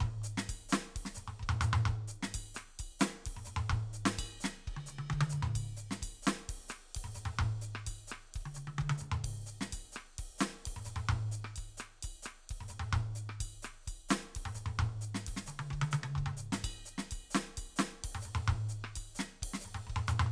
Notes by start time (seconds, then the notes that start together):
0.01 kick, mid tom
0.22 hi-hat pedal, mid tom
0.38 snare
0.50 kick, ride bell
0.69 snare, hi-hat pedal
0.96 kick, ride
1.04 kick, snare
1.15 hi-hat pedal, mid tom
1.28 mid tom
1.40 kick, mid tom
1.50 mid tom
1.62 hi-hat pedal, mid tom
1.74 mid tom
1.86 kick, mid tom
2.08 hi-hat pedal
2.23 snare
2.35 kick, ride bell
2.55 cross-stick, hi-hat pedal
2.80 kick, ride bell
3.00 snare, hi-hat pedal
3.26 kick, ride
3.33 kick
3.37 mid tom
3.45 hi-hat pedal, mid tom
3.57 mid tom
3.70 kick, mid tom
3.77 kick
3.94 hi-hat pedal
4.06 snare
4.19 kick, ride bell
4.41 snare, hi-hat pedal
4.68 kick, ride
4.73 kick, high tom
4.87 hi-hat pedal, high tom
4.99 high tom
5.10 kick, high tom
5.21 high tom
5.30 hi-hat pedal, mid tom
5.43 mid tom
5.56 kick, ride bell
5.77 hi-hat pedal
5.91 snare
6.03 kick, ride bell
6.08 kick
6.23 hi-hat pedal
6.27 snare
6.49 kick, ride
6.56 kick
6.69 cross-stick, hi-hat pedal
6.95 kick, ride
7.05 mid tom
7.15 hi-hat pedal, mid tom
7.26 mid tom
7.39 kick, mid tom
7.46 kick
7.62 hi-hat pedal
7.76 cross-stick
7.87 kick, ride bell
8.08 hi-hat pedal
8.12 cross-stick
8.35 kick, ride
8.42 kick
8.46 high tom
8.55 hi-hat pedal, high tom
8.68 high tom
8.79 kick, high tom
8.90 high tom
8.98 hi-hat pedal, mid tom
9.12 mid tom
9.24 kick, ride
9.47 hi-hat pedal
9.61 snare
9.73 kick, ride bell
9.93 cross-stick, hi-hat pedal
10.19 kick, ride
10.39 snare, hi-hat pedal
10.66 kick, ride
10.77 mid tom
10.85 hi-hat pedal
10.97 mid tom
11.09 kick, mid tom
11.21 mid tom
11.32 hi-hat pedal
11.45 cross-stick
11.56 kick, ride bell
11.64 kick
11.78 cross-stick, hi-hat pedal
12.03 kick, ride bell
12.23 cross-stick, hi-hat pedal
12.50 kick, ride
12.61 mid tom
12.69 hi-hat pedal, mid tom
12.80 mid tom
12.93 kick, mid tom
12.99 kick
13.16 hi-hat pedal
13.30 cross-stick
13.41 kick, ride bell
13.63 cross-stick, hi-hat pedal
13.83 hi-hat pedal
13.88 kick, ride bell
14.09 snare, hi-hat pedal
14.36 kick, ride
14.46 mid tom
14.55 hi-hat pedal, mid tom
14.66 mid tom
14.80 kick, mid tom
14.90 mid tom
15.02 hi-hat pedal
15.15 snare
15.27 kick, ride
15.37 snare
15.47 hi-hat pedal, high tom
15.60 high tom
15.71 kick, high tom
15.82 high tom
15.92 hi-hat pedal, high tom
16.04 high tom
16.16 kick, mid tom
16.27 mid tom
16.37 hi-hat pedal
16.53 snare
16.64 kick, ride bell
16.74 kick
16.86 hi-hat pedal
16.98 snare
17.12 kick, ride bell
17.31 hi-hat pedal
17.35 snare
17.58 kick, ride bell
17.77 snare, hi-hat pedal
18.04 kick, ride
18.15 mid tom
18.22 hi-hat pedal, mid tom
18.35 mid tom
18.48 kick, mid tom
18.69 hi-hat pedal
18.85 cross-stick
18.96 kick, ride bell
19.15 hi-hat pedal
19.20 snare
19.43 kick, ride
19.54 snare
19.61 hi-hat pedal
19.65 mid tom
19.75 mid tom
19.87 kick, mid tom
19.97 mid tom
20.08 hi-hat pedal, mid tom
20.20 mid tom
20.27 mid tom